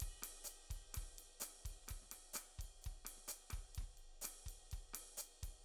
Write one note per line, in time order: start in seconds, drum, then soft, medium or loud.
0.01 kick soft
0.01 ride medium
0.08 kick soft
0.23 cross-stick soft
0.23 snare soft
0.23 ride medium
0.45 hi-hat pedal medium
0.45 ride soft
0.71 kick soft
0.71 ride soft
0.76 kick soft
0.95 kick soft
0.95 cross-stick soft
0.95 ride medium
1.03 kick soft
1.19 ride soft
1.41 cross-stick soft
1.41 snare soft
1.41 hi-hat pedal medium
1.41 ride medium
1.66 kick soft
1.66 ride soft
1.71 kick soft
1.88 kick soft
1.88 cross-stick soft
1.88 snare soft
1.88 hi-hat pedal soft
1.88 ride medium
1.96 kick soft
2.02 snare soft
2.12 cross-stick soft
2.12 ride medium
2.34 cross-stick soft
2.34 hi-hat pedal medium
2.34 ride soft
2.59 kick soft
2.59 ride soft
2.64 kick soft
2.82 hi-hat pedal soft
2.82 ride soft
2.87 kick soft
2.92 kick soft
3.06 cross-stick soft
3.06 ride medium
3.17 snare soft
3.29 cross-stick soft
3.29 hi-hat pedal medium
3.29 ride soft
3.51 kick soft
3.51 cross-stick soft
3.51 ride soft
3.59 kick soft
3.76 kick soft
3.76 ride soft
3.80 kick soft
3.80 snare soft
3.98 ride soft
4.22 cross-stick soft
4.22 hi-hat pedal medium
4.26 ride medium
4.47 kick soft
4.47 ride soft
4.72 kick soft
4.72 ride soft
4.78 kick soft
4.94 cross-stick soft
4.94 ride medium
5.18 hi-hat pedal medium
5.18 ride soft
5.43 kick soft
5.43 ride soft
5.49 kick soft